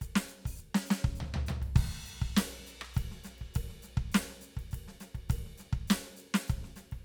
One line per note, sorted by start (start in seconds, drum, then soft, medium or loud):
0.01 kick soft
0.01 hi-hat pedal medium
0.01 ride soft
0.15 snare loud
0.28 hi-hat pedal medium
0.28 ride soft
0.45 open hi-hat medium
0.45 kick medium
0.57 hi-hat pedal medium
0.57 ride soft
0.74 snare loud
0.86 hi-hat pedal medium
0.90 snare loud
1.04 kick loud
1.15 hi-hat pedal medium
1.20 floor tom loud
1.34 floor tom loud
1.46 floor tom loud
1.46 hi-hat pedal medium
1.62 kick soft
1.62 ride soft
1.75 kick loud
1.75 hi-hat pedal soft
1.75 crash medium
2.05 hi-hat pedal medium
2.05 ride soft
2.21 kick medium
2.36 snare loud
2.36 hi-hat pedal medium
2.36 ride loud
2.46 snare soft
2.50 snare soft
2.66 hi-hat pedal medium
2.66 ride soft
2.81 cross-stick medium
2.94 kick medium
2.94 hi-hat pedal medium
2.98 ride medium
3.11 snare soft
3.24 snare soft
3.24 hi-hat pedal medium
3.24 ride soft
3.38 kick soft
3.38 ride soft
3.54 kick medium
3.54 hi-hat pedal medium
3.54 ride medium
3.70 snare soft
3.82 snare soft
3.82 hi-hat pedal medium
3.82 ride soft
3.97 kick medium
3.97 ride soft
4.12 snare loud
4.12 hi-hat pedal medium
4.12 ride medium
4.29 snare soft
4.41 hi-hat pedal medium
4.41 ride soft
4.56 kick medium
4.56 ride soft
4.71 kick medium
4.71 hi-hat pedal medium
4.71 ride medium
4.88 snare soft
5.00 snare soft
5.00 hi-hat pedal medium
5.00 ride soft
5.14 kick soft
5.14 ride soft
5.29 kick medium
5.29 hi-hat pedal medium
5.29 ride medium
5.46 snare soft
5.57 snare soft
5.57 hi-hat pedal medium
5.57 ride soft
5.73 kick medium
5.73 ride soft
5.87 snare loud
5.87 hi-hat pedal medium
5.87 ride medium
6.05 snare soft
6.16 hi-hat pedal medium
6.16 ride soft
6.34 snare loud
6.47 kick medium
6.47 hi-hat pedal medium
6.47 ride medium
6.64 snare soft
6.76 snare soft
6.76 hi-hat pedal medium
6.76 ride soft
6.91 kick soft
6.91 ride soft